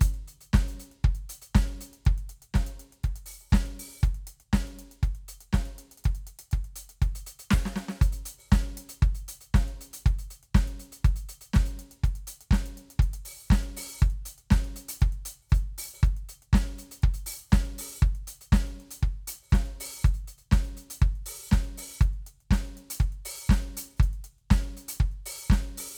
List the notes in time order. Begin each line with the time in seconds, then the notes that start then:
0.01 closed hi-hat, kick
0.14 closed hi-hat
0.28 closed hi-hat
0.41 closed hi-hat
0.53 kick, snare
0.68 closed hi-hat
0.80 closed hi-hat
0.92 closed hi-hat
1.04 kick, closed hi-hat
1.15 closed hi-hat
1.29 closed hi-hat
1.42 closed hi-hat
1.55 kick, snare
1.68 closed hi-hat
1.81 closed hi-hat
1.93 closed hi-hat
2.06 kick, closed hi-hat
2.18 closed hi-hat
2.29 closed hi-hat
2.42 closed hi-hat
2.54 kick, snare
2.67 closed hi-hat
2.80 closed hi-hat
2.93 closed hi-hat
3.04 kick, closed hi-hat
3.16 closed hi-hat
3.26 open hi-hat
3.41 open hi-hat
3.50 kick, snare, hi-hat pedal
3.66 closed hi-hat
3.80 open hi-hat
3.93 open hi-hat
4.00 kick, closed hi-hat, hi-hat pedal
4.15 closed hi-hat
4.27 closed hi-hat
4.40 closed hi-hat
4.53 kick, snare
4.67 closed hi-hat
4.79 closed hi-hat
4.91 closed hi-hat
5.03 kick, closed hi-hat
5.15 closed hi-hat
5.28 closed hi-hat
5.41 closed hi-hat
5.53 kick, snare
5.66 closed hi-hat
5.78 closed hi-hat
5.91 closed hi-hat
5.98 closed hi-hat
6.04 kick, closed hi-hat
6.15 closed hi-hat
6.27 closed hi-hat
6.39 closed hi-hat
6.51 kick, closed hi-hat
6.64 closed hi-hat
6.76 closed hi-hat
6.89 closed hi-hat
7.02 kick, closed hi-hat
7.15 closed hi-hat
7.27 closed hi-hat
7.39 closed hi-hat
7.51 kick, snare
7.66 snare
7.76 snare
7.89 snare
8.01 closed hi-hat, kick
8.13 closed hi-hat
8.26 open hi-hat
8.39 open hi-hat
8.48 kick, snare, hi-hat pedal
8.64 closed hi-hat
8.72 kick
8.77 closed hi-hat
8.89 closed hi-hat
9.02 kick, closed hi-hat
9.15 closed hi-hat
9.28 closed hi-hat
9.41 closed hi-hat
9.54 kick, snare
9.68 closed hi-hat
9.74 kick
9.81 closed hi-hat
9.93 closed hi-hat
10.06 kick, closed hi-hat
10.19 closed hi-hat
10.31 closed hi-hat
10.43 closed hi-hat
10.55 kick, snare
10.68 closed hi-hat
10.80 closed hi-hat
10.92 closed hi-hat
11.05 kick, closed hi-hat
11.16 closed hi-hat
11.29 closed hi-hat
11.41 closed hi-hat
11.54 kick, snare
11.66 closed hi-hat
11.79 closed hi-hat
11.91 closed hi-hat
12.04 kick, closed hi-hat
12.15 closed hi-hat
12.27 closed hi-hat
12.41 closed hi-hat
12.51 kick, snare
12.66 closed hi-hat
12.77 closed hi-hat
12.90 closed hi-hat
12.99 kick, closed hi-hat
13.14 closed hi-hat
13.25 open hi-hat
13.39 open hi-hat
13.47 kick, hi-hat pedal
13.52 snare
13.63 closed hi-hat
13.77 open hi-hat
13.89 open hi-hat
13.99 kick, closed hi-hat, hi-hat pedal
14.10 closed hi-hat
14.22 closed hi-hat, kick
14.38 closed hi-hat
14.51 kick, snare
14.64 closed hi-hat
14.76 closed hi-hat
14.89 closed hi-hat
15.01 kick, closed hi-hat
15.12 closed hi-hat
15.25 closed hi-hat
15.43 open hi-hat
15.50 kick, hi-hat pedal
15.54 closed hi-hat
15.78 open hi-hat
15.94 open hi-hat
16.00 kick, hi-hat pedal
16.05 closed hi-hat
16.17 closed hi-hat
16.29 closed hi-hat
16.42 closed hi-hat
16.53 kick, snare
16.67 closed hi-hat
16.74 kick
16.79 closed hi-hat
16.91 closed hi-hat
17.02 kick, closed hi-hat
17.14 closed hi-hat
17.26 open hi-hat
17.41 open hi-hat
17.49 kick, snare, hi-hat pedal
17.65 closed hi-hat
17.71 kick
17.79 open hi-hat
17.92 open hi-hat
17.98 hi-hat pedal
18.02 kick, closed hi-hat
18.15 closed hi-hat
18.27 closed hi-hat
18.41 closed hi-hat
18.52 kick, snare
18.67 closed hi-hat
18.80 closed hi-hat
18.91 closed hi-hat
19.03 kick, closed hi-hat
19.28 closed hi-hat
19.42 open hi-hat
19.50 kick, snare, hi-hat pedal
19.66 closed hi-hat
19.73 kick
19.80 open hi-hat
19.93 open hi-hat
20.02 kick, hi-hat pedal
20.06 closed hi-hat
20.14 closed hi-hat
20.24 closed hi-hat, kick
20.38 closed hi-hat
20.52 kick, snare
20.64 closed hi-hat
20.77 closed hi-hat
20.90 closed hi-hat
21.02 kick, closed hi-hat
21.16 closed hi-hat
21.26 open hi-hat
21.49 kick, snare, hi-hat pedal
21.64 closed hi-hat
21.78 open hi-hat
21.92 open hi-hat
21.99 kick, closed hi-hat, hi-hat pedal
22.14 closed hi-hat
22.22 kick
22.27 closed hi-hat
22.41 closed hi-hat
22.51 kick, snare
22.66 closed hi-hat
22.77 closed hi-hat
22.90 closed hi-hat
23.00 kick, closed hi-hat
23.12 closed hi-hat
23.25 open hi-hat
23.46 kick, hi-hat pedal
23.51 snare
23.63 closed hi-hat
23.68 kick
23.77 open hi-hat
23.91 open hi-hat
23.97 kick, hi-hat pedal
24.03 closed hi-hat
24.13 closed hi-hat
24.24 closed hi-hat
24.39 closed hi-hat
24.51 kick, snare
24.64 closed hi-hat
24.77 closed hi-hat
24.89 closed hi-hat
25.00 kick, closed hi-hat
25.12 closed hi-hat
25.26 open hi-hat
25.41 open hi-hat
25.46 kick, hi-hat pedal
25.52 snare
25.64 closed hi-hat
25.78 open hi-hat
25.92 open hi-hat